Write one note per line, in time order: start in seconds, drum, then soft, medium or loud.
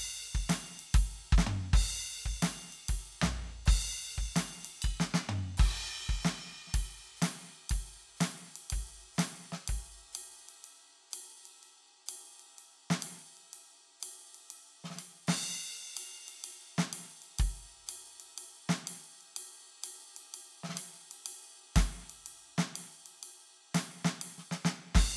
0.35 kick medium
0.40 hi-hat pedal soft
0.49 snare loud
0.49 ride loud
0.79 ride medium
0.94 kick loud
0.94 ride loud
1.32 kick loud
1.32 hi-hat pedal soft
1.38 snare loud
1.47 high tom loud
1.73 kick loud
1.73 crash loud
2.26 kick medium
2.36 hi-hat pedal soft
2.42 snare loud
2.42 ride loud
2.73 ride medium
2.89 kick medium
2.89 ride loud
3.22 snare loud
3.22 hi-hat pedal medium
3.22 floor tom loud
3.66 kick loud
3.66 crash loud
4.18 kick medium
4.31 hi-hat pedal soft
4.36 snare loud
4.36 ride loud
4.65 ride medium
4.82 kick medium
4.82 ride bell loud
5.00 snare loud
5.14 snare loud
5.29 high tom loud
5.57 kick loud
5.57 crash medium
5.57 ride loud
6.09 kick medium
6.22 snare loud
6.22 hi-hat pedal soft
6.67 snare soft
6.74 kick medium
6.74 snare soft
6.74 ride loud
7.16 hi-hat pedal soft
7.22 snare loud
7.22 ride loud
7.70 kick medium
7.70 ride loud
8.16 hi-hat pedal soft
8.21 snare loud
8.21 ride loud
8.56 ride medium
8.70 kick medium
8.70 ride loud
9.14 hi-hat pedal soft
9.18 snare loud
9.18 ride loud
9.52 snare medium
9.68 kick medium
9.68 ride loud
10.13 hi-hat pedal medium
10.13 ride loud
10.49 ride medium
10.64 ride medium
11.11 hi-hat pedal soft
11.11 ride loud
11.46 ride medium
11.63 ride soft
12.06 hi-hat pedal soft
12.06 ride loud
12.40 ride soft
12.58 ride medium
12.90 snare loud
12.98 hi-hat pedal medium
12.98 ride loud
13.37 ride soft
13.53 ride medium
14.00 hi-hat pedal soft
14.00 ride loud
14.35 ride medium
14.50 ride medium
14.84 snare medium
14.90 snare medium
14.90 hi-hat pedal soft
14.96 snare soft
14.96 ride medium
15.28 snare loud
15.28 crash loud
15.94 hi-hat pedal medium
15.94 ride loud
16.28 ride medium
16.44 ride loud
16.78 snare loud
16.78 hi-hat pedal medium
16.93 ride loud
17.22 ride medium
17.39 kick loud
17.39 ride loud
17.87 hi-hat pedal medium
17.87 ride loud
18.20 ride medium
18.38 ride loud
18.69 snare loud
18.75 hi-hat pedal medium
18.87 ride loud
19.21 ride soft
19.36 ride loud
19.82 hi-hat pedal medium
19.82 ride loud
20.17 ride medium
20.34 ride loud
20.64 snare medium
20.69 snare medium
20.74 snare medium
20.74 hi-hat pedal soft
20.74 ride loud
21.11 ride medium
21.26 ride loud
21.73 kick loud
21.73 snare loud
21.73 hi-hat pedal soft
21.73 ride loud
22.10 ride medium
22.26 ride medium
22.58 snare loud
22.76 ride loud
23.06 ride medium
23.23 ride loud
23.75 snare loud
23.75 ride loud
24.05 snare loud
24.21 ride loud
24.38 snare soft
24.51 snare medium
24.65 snare loud
24.95 kick loud
24.95 snare loud
24.95 hi-hat pedal soft
24.95 crash loud